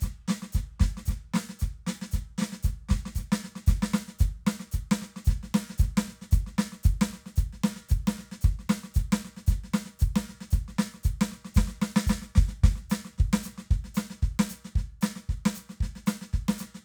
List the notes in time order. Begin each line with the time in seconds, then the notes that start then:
0.01 kick, snare, hi-hat pedal
0.28 snare
0.30 snare
0.42 snare
0.53 kick, snare, hi-hat pedal
0.80 kick, snare
0.82 snare
0.97 snare
1.06 kick, snare, hi-hat pedal
1.34 snare
1.36 snare
1.49 snare
1.59 kick, snare, hi-hat pedal
1.87 snare
2.02 snare
2.12 kick, snare, hi-hat pedal
2.38 snare
2.42 snare
2.53 snare
2.63 kick, snare, hi-hat pedal
2.89 kick, snare
3.06 snare
3.15 kick, snare, hi-hat pedal
3.32 snare
3.44 snare
3.56 snare
3.67 kick, snare, hi-hat pedal
3.83 snare
3.94 snare
4.08 snare
4.19 kick, snare, hi-hat pedal
4.47 snare
4.60 snare
4.72 kick, snare, hi-hat pedal
4.91 snare
5.02 snare
5.16 snare
5.25 kick, snare, hi-hat pedal
5.43 snare
5.55 snare
5.70 snare
5.78 kick, snare, hi-hat pedal
5.97 snare
6.08 snare
6.22 snare
6.31 kick, snare, hi-hat pedal
6.47 snare
6.59 snare
6.72 snare
6.84 kick, snare, hi-hat pedal
7.02 snare
7.13 snare
7.26 snare
7.36 kick, snare, hi-hat pedal
7.53 snare
7.64 snare
7.76 snare
7.89 kick, snare, hi-hat pedal
8.08 snare
8.19 snare
8.32 snare
8.41 kick, snare, hi-hat pedal
8.59 snare
8.70 snare
8.84 snare
8.95 kick, snare, hi-hat pedal
9.13 snare
9.25 snare
9.37 snare
9.47 kick, snare, hi-hat pedal
9.64 snare
9.74 snare
9.86 snare
9.99 kick, snare, hi-hat pedal
10.16 snare
10.29 snare
10.41 snare
10.51 kick, snare, hi-hat pedal
10.68 snare
10.79 snare
10.94 snare
11.04 kick, snare, hi-hat pedal
11.21 snare
11.32 snare
11.45 snare
11.55 kick, snare, hi-hat pedal
11.68 snare
11.82 snare
11.96 snare
12.07 kick, snare, hi-hat pedal
12.22 snare
12.36 kick, snare
12.48 snare
12.64 kick, snare
12.76 snare
12.90 snare, hi-hat pedal
13.05 snare
13.18 kick, snare
13.33 snare
13.43 snare, hi-hat pedal
13.58 snare
13.71 kick, snare
13.85 snare
13.95 snare, hi-hat pedal
14.10 snare
14.23 kick, snare
14.39 snare
14.49 snare, hi-hat pedal
14.65 snare
14.76 kick, snare
15.02 snare, hi-hat pedal
15.16 snare
15.29 kick, snare
15.46 snare
15.55 snare, hi-hat pedal
15.70 snare
15.81 kick, snare
15.96 snare
16.07 snare, hi-hat pedal
16.22 snare
16.33 kick, snare
16.49 snare
16.58 snare, hi-hat pedal
16.75 snare